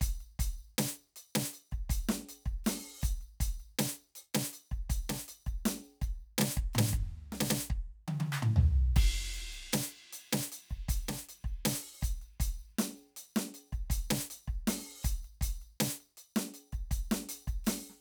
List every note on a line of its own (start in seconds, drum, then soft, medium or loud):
0.01 closed hi-hat loud
0.01 kick medium
0.01 hi-hat pedal medium
0.20 closed hi-hat soft
0.39 closed hi-hat loud
0.39 kick medium
0.59 closed hi-hat soft
0.78 closed hi-hat loud
0.78 snare loud
0.97 closed hi-hat soft
1.16 closed hi-hat medium
1.35 snare loud
1.35 closed hi-hat soft
1.53 closed hi-hat medium
1.71 kick soft
1.71 closed hi-hat soft
1.89 closed hi-hat loud
1.89 kick medium
2.09 snare loud
2.29 closed hi-hat medium
2.46 kick medium
2.46 closed hi-hat soft
2.64 snare loud
2.64 hi-hat pedal soft
2.64 percussion loud
3.02 closed hi-hat loud
3.02 kick medium
3.02 hi-hat pedal medium
3.21 closed hi-hat soft
3.40 closed hi-hat loud
3.40 kick medium
3.60 closed hi-hat soft
3.79 closed hi-hat loud
3.79 snare loud
3.98 closed hi-hat soft
4.15 hi-hat pedal soft
4.15 percussion medium
4.34 snare loud
4.34 closed hi-hat medium
4.53 closed hi-hat medium
4.71 kick soft
4.71 closed hi-hat soft
4.90 closed hi-hat loud
4.90 kick medium
5.09 snare loud
5.28 closed hi-hat medium
5.46 kick soft
5.46 closed hi-hat soft
5.65 snare loud
5.65 percussion loud
6.01 kick medium
6.01 hi-hat pedal medium
6.38 snare loud
6.38 hi-hat pedal soft
6.41 snare loud
6.57 kick medium
6.73 hi-hat pedal soft
6.73 mid tom loud
6.78 snare loud
6.93 kick medium
7.32 snare medium
7.40 snare loud
7.49 snare loud
7.49 hi-hat pedal medium
7.70 kick medium
8.08 high tom loud
8.20 high tom loud
8.32 percussion loud
8.42 mid tom loud
8.56 floor tom loud
8.96 kick loud
8.96 ride loud
9.33 closed hi-hat medium
9.52 closed hi-hat soft
9.73 closed hi-hat loud
9.73 snare loud
10.12 closed hi-hat loud
10.32 snare loud
10.32 closed hi-hat soft
10.52 closed hi-hat loud
10.70 kick soft
10.70 closed hi-hat soft
10.88 closed hi-hat loud
10.88 kick medium
11.08 snare medium
11.08 closed hi-hat soft
11.29 closed hi-hat medium
11.44 kick soft
11.44 closed hi-hat soft
11.65 snare loud
11.65 percussion loud
12.01 closed hi-hat loud
12.01 kick medium
12.01 hi-hat pedal medium
12.21 closed hi-hat soft
12.40 closed hi-hat loud
12.40 kick medium
12.61 closed hi-hat soft
12.78 closed hi-hat loud
12.78 snare loud
12.97 closed hi-hat soft
13.16 closed hi-hat medium
13.36 snare loud
13.54 closed hi-hat medium
13.72 kick soft
13.72 closed hi-hat soft
13.90 closed hi-hat loud
13.90 kick medium
14.10 snare loud
14.30 closed hi-hat loud
14.48 kick soft
14.48 closed hi-hat soft
14.67 snare loud
14.67 percussion loud
15.03 closed hi-hat loud
15.03 kick medium
15.03 hi-hat pedal medium
15.24 closed hi-hat soft
15.41 closed hi-hat loud
15.41 kick medium
15.61 closed hi-hat soft
15.80 closed hi-hat loud
15.80 snare loud
16.00 closed hi-hat soft
16.17 closed hi-hat medium
16.36 snare loud
16.36 closed hi-hat medium
16.54 closed hi-hat medium
16.72 kick soft
16.72 closed hi-hat soft
16.91 closed hi-hat loud
16.91 kick medium
17.11 snare loud
17.11 closed hi-hat medium
17.29 closed hi-hat loud
17.47 kick medium
17.47 closed hi-hat medium
17.64 snare loud
17.64 hi-hat pedal soft
17.64 percussion loud
17.89 snare soft